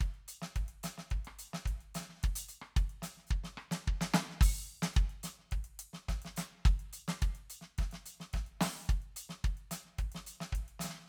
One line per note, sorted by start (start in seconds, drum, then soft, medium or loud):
0.01 kick medium
0.01 closed hi-hat soft
0.14 closed hi-hat soft
0.28 closed hi-hat medium
0.42 snare medium
0.56 kick medium
0.56 closed hi-hat soft
0.69 closed hi-hat soft
0.84 closed hi-hat medium
0.84 snare medium
0.98 snare medium
1.11 kick medium
1.11 closed hi-hat soft
1.25 cross-stick medium
1.25 closed hi-hat soft
1.39 closed hi-hat medium
1.54 snare medium
1.66 kick medium
1.66 closed hi-hat soft
1.81 closed hi-hat soft
1.95 closed hi-hat medium
1.95 snare medium
2.01 snare soft
2.09 snare soft
2.13 snare soft
2.17 snare soft
2.22 kick medium
2.22 snare soft
2.22 closed hi-hat soft
2.26 snare soft
2.30 snare soft
2.36 closed hi-hat medium
2.49 closed hi-hat soft
2.62 cross-stick medium
2.77 kick loud
2.77 closed hi-hat soft
2.90 closed hi-hat soft
3.03 open hi-hat medium
3.03 snare medium
3.18 snare soft
3.27 kick medium
3.27 hi-hat pedal soft
3.44 snare medium
3.58 cross-stick medium
3.72 snare loud
3.88 kick medium
4.01 snare loud
4.13 kick soft
4.13 snare loud
4.30 snare soft
4.41 open hi-hat loud
4.41 kick loud
4.83 snare loud
4.94 kick loud
4.94 hi-hat pedal soft
4.98 closed hi-hat soft
5.10 closed hi-hat soft
5.24 closed hi-hat medium
5.24 snare medium
5.39 snare soft
5.52 kick medium
5.52 closed hi-hat soft
5.65 closed hi-hat soft
5.80 closed hi-hat medium
5.94 snare soft
6.09 kick medium
6.09 snare medium
6.09 closed hi-hat soft
6.22 snare soft
6.22 closed hi-hat soft
6.34 open hi-hat medium
6.34 kick soft
6.34 snare medium
6.66 kick loud
6.66 closed hi-hat soft
6.80 closed hi-hat soft
6.93 closed hi-hat medium
7.08 snare loud
7.22 kick medium
7.22 closed hi-hat soft
7.35 closed hi-hat soft
7.50 closed hi-hat medium
7.62 snare soft
7.78 kick medium
7.78 snare soft
7.78 closed hi-hat soft
7.92 snare soft
7.92 closed hi-hat soft
8.06 closed hi-hat medium
8.06 kick soft
8.20 snare soft
8.34 kick medium
8.34 snare soft
8.34 closed hi-hat soft
8.47 closed hi-hat soft
8.59 open hi-hat medium
8.59 kick soft
8.59 snare medium
8.66 snare medium
8.86 kick medium
8.86 closed hi-hat soft
8.86 hi-hat pedal soft
9.02 closed hi-hat soft
9.17 closed hi-hat medium
9.30 snare medium
9.45 kick medium
9.45 closed hi-hat soft
9.57 closed hi-hat soft
9.71 closed hi-hat medium
9.71 snare medium
9.86 snare soft
9.99 kick medium
9.99 closed hi-hat soft
10.12 snare medium
10.12 closed hi-hat soft
10.27 closed hi-hat medium
10.41 snare medium
10.53 kick medium
10.53 closed hi-hat soft
10.68 closed hi-hat soft
10.80 closed hi-hat medium
10.80 snare medium
10.84 snare medium
10.89 snare medium
10.94 snare soft
11.00 snare soft
11.05 snare soft